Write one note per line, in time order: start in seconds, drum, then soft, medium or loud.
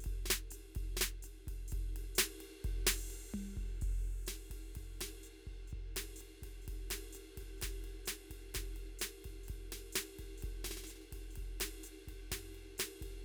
0.01 hi-hat pedal medium
0.01 ride soft
0.06 kick soft
0.12 kick soft
0.26 snare medium
0.31 snare loud
0.51 snare soft
0.51 hi-hat pedal medium
0.51 ride medium
0.54 snare soft
0.75 kick soft
0.75 ride soft
0.97 snare medium
1.01 snare medium
1.23 hi-hat pedal medium
1.23 ride soft
1.38 snare soft
1.48 kick soft
1.48 ride soft
1.53 kick soft
1.68 hi-hat pedal medium
1.72 kick soft
1.72 ride soft
1.79 kick soft
1.96 ride medium
2.16 snare loud
2.16 hi-hat pedal medium
2.16 ride medium
2.41 ride soft
2.47 snare soft
2.55 snare soft
2.65 kick soft
2.65 ride soft
2.72 kick soft
2.87 snare loud
2.87 hi-hat pedal loud
2.87 ride medium
2.96 snare soft
3.11 ride soft
3.34 kick soft
3.34 mid tom medium
3.57 kick soft
3.63 kick soft
3.71 snare soft
3.82 kick soft
3.82 crash medium
3.89 kick soft
4.27 snare medium
4.27 hi-hat pedal medium
4.27 ride medium
4.51 kick soft
4.51 ride soft
4.57 snare soft
4.74 kick soft
4.74 hi-hat pedal soft
4.74 ride soft
5.01 snare medium
5.01 ride medium
5.24 hi-hat pedal medium
5.47 kick soft
5.47 ride soft
5.52 kick soft
5.68 hi-hat pedal soft
5.73 kick soft
5.79 kick soft
5.97 snare medium
5.97 ride medium
6.16 hi-hat pedal medium
6.21 ride soft
6.43 kick soft
6.43 ride soft
6.48 kick soft
6.62 hi-hat pedal soft
6.68 kick soft
6.68 ride soft
6.74 kick soft
6.91 snare medium
6.91 ride medium
7.13 hi-hat pedal medium
7.13 ride soft
7.38 kick soft
7.38 ride soft
7.43 kick soft
7.58 hi-hat pedal soft
7.58 ride medium
7.63 kick soft
7.63 snare medium
7.69 kick soft
7.84 ride soft
8.06 snare medium
8.06 hi-hat pedal medium
8.06 ride medium
8.31 kick soft
8.31 ride soft
8.55 kick soft
8.55 snare medium
8.55 ride medium
8.61 kick soft
8.73 snare soft
8.73 ride soft
8.99 snare medium
8.99 hi-hat pedal medium
8.99 ride medium
9.18 snare soft
9.25 kick soft
9.25 ride soft
9.31 kick soft
9.44 hi-hat pedal soft
9.49 kick soft
9.49 ride soft
9.56 kick soft
9.72 snare soft
9.72 ride medium
9.93 snare medium
9.93 hi-hat pedal medium
9.93 ride medium
10.19 kick soft
10.19 ride soft
10.25 kick soft
10.38 hi-hat pedal soft
10.43 kick soft
10.43 ride soft
10.50 kick soft
10.65 snare medium
10.65 ride medium
10.71 snare soft
10.77 snare soft
10.84 snare soft
10.84 hi-hat pedal medium
10.90 snare soft
10.90 ride soft
10.96 snare soft
11.02 snare soft
11.08 snare soft
11.13 kick soft
11.13 snare soft
11.13 ride soft
11.18 kick soft
11.18 snare soft
11.31 hi-hat pedal soft
11.36 kick soft
11.36 ride soft
11.43 kick soft
11.61 snare medium
11.61 ride medium
11.84 hi-hat pedal medium
11.84 ride soft
12.08 kick soft
12.08 ride soft
12.13 kick soft
12.32 kick soft
12.32 snare medium
12.32 ride medium
12.38 kick soft
12.55 ride soft
12.78 snare medium
12.78 hi-hat pedal medium
12.78 ride medium
13.02 kick soft
13.02 ride soft
13.07 kick soft